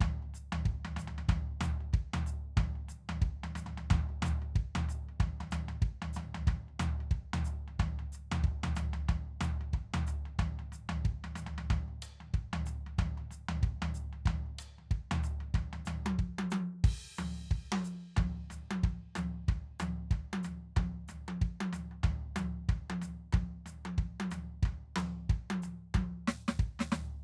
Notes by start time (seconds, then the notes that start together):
0.01 kick, floor tom
0.23 floor tom
0.34 floor tom, hi-hat pedal
0.53 floor tom
0.66 kick, floor tom
0.85 floor tom
0.97 floor tom, hi-hat pedal
1.08 floor tom
1.19 floor tom
1.29 kick, floor tom
1.61 floor tom, hi-hat pedal
1.81 floor tom
1.93 kick, floor tom
2.14 floor tom
2.27 floor tom, hi-hat pedal
2.57 kick, floor tom
2.76 floor tom
2.80 floor tom
2.89 floor tom, hi-hat pedal
3.09 floor tom
3.22 kick, floor tom
3.44 floor tom
3.56 floor tom, hi-hat pedal
3.67 floor tom
3.78 floor tom
3.91 kick, floor tom
4.09 floor tom
4.23 floor tom, hi-hat pedal
4.42 floor tom
4.56 kick
4.76 floor tom
4.89 floor tom, hi-hat pedal
5.09 floor tom
5.20 kick, floor tom
5.41 floor tom
5.52 floor tom, hi-hat pedal
5.69 floor tom
5.82 kick
6.02 floor tom
6.14 floor tom, hi-hat pedal
6.35 floor tom
6.47 kick, floor tom
6.69 floor tom
6.80 floor tom, hi-hat pedal
7.01 floor tom
7.11 kick, floor tom
7.34 floor tom
7.45 floor tom, hi-hat pedal
7.68 floor tom
7.80 kick, floor tom
7.99 floor tom
8.13 floor tom, hi-hat pedal
8.32 floor tom
8.44 kick, floor tom
8.64 floor tom
8.76 floor tom, hi-hat pedal
8.94 floor tom
9.09 kick, floor tom
9.41 floor tom, hi-hat pedal
9.61 floor tom
9.74 kick, floor tom
9.94 floor tom
10.07 floor tom, hi-hat pedal
10.26 floor tom
10.39 kick, floor tom
10.59 floor tom
10.73 floor tom, hi-hat pedal
10.90 floor tom
11.05 kick, floor tom
11.24 kick, floor tom
11.36 floor tom, hi-hat pedal
11.47 floor tom
11.58 floor tom
11.71 kick, floor tom
11.88 floor tom
12.02 hi-hat pedal, floor tom
12.21 floor tom
12.34 kick, floor tom
12.54 floor tom
12.66 floor tom, hi-hat pedal
12.87 floor tom
12.99 kick, floor tom
13.18 floor tom
13.31 floor tom, hi-hat pedal
13.49 floor tom
13.63 kick, floor tom
13.82 floor tom
13.95 floor tom, hi-hat pedal
14.13 floor tom
14.26 kick, floor tom
14.46 floor tom
14.59 hi-hat pedal, floor tom
14.79 floor tom
14.91 kick, floor tom
15.12 floor tom
15.24 floor tom, hi-hat pedal
15.41 floor tom
15.55 kick, floor tom
15.73 floor tom
15.86 floor tom, hi-hat pedal
16.06 high tom
16.19 kick
16.39 high tom
16.51 hi-hat pedal, high tom
16.84 kick, crash
17.18 kick, floor tom, hi-hat pedal, high tom
17.51 kick, floor tom
17.72 high tom
17.85 hi-hat pedal
18.17 kick, floor tom, high tom
18.51 floor tom, hi-hat pedal
18.71 high tom
18.84 kick, floor tom
19.16 floor tom, hi-hat pedal, high tom
19.49 kick, floor tom
19.80 floor tom, hi-hat pedal, high tom
20.11 kick, floor tom
20.34 high tom
20.44 floor tom, hi-hat pedal
20.77 kick, floor tom, high tom
21.08 floor tom, hi-hat pedal
21.29 high tom
21.42 kick, floor tom
21.61 high tom
21.73 floor tom, hi-hat pedal
21.92 high tom
22.04 kick, floor tom
22.36 floor tom, hi-hat pedal, high tom
22.69 kick, floor tom
22.90 high tom
23.01 kick, floor tom, hi-hat pedal
23.33 kick, floor tom, high tom
23.66 floor tom, hi-hat pedal
23.86 high tom
23.98 kick, floor tom
24.20 high tom
24.31 floor tom, hi-hat pedal
24.63 kick, floor tom
24.96 floor tom, hi-hat pedal, high tom
25.30 kick, floor tom
25.51 high tom
25.63 floor tom, hi-hat pedal
25.95 kick, floor tom, high tom
26.28 snare, floor tom, hi-hat pedal
26.49 snare, floor tom
26.60 kick
26.80 snare, floor tom
26.92 snare, floor tom, hi-hat pedal